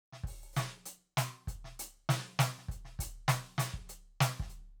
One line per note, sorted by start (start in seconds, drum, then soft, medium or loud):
0.13 snare soft
0.24 open hi-hat medium
0.24 kick medium
0.43 open hi-hat soft
0.53 closed hi-hat medium
0.53 snare loud
0.53 hi-hat pedal medium
0.86 closed hi-hat loud
1.17 closed hi-hat loud
1.17 snare loud
1.47 closed hi-hat medium
1.47 kick medium
1.64 snare soft
1.79 closed hi-hat loud
2.09 closed hi-hat loud
2.09 snare loud
2.39 closed hi-hat loud
2.39 snare loud
2.58 snare soft
2.69 closed hi-hat medium
2.69 kick medium
2.85 snare soft
2.90 snare soft
2.99 closed hi-hat loud
2.99 kick medium
3.28 closed hi-hat loud
3.28 snare loud
3.58 closed hi-hat loud
3.58 snare loud
3.74 kick medium
3.87 closed hi-hat medium
3.87 snare soft
4.21 closed hi-hat loud
4.21 snare loud
4.40 kick medium
4.40 snare soft
4.50 closed hi-hat soft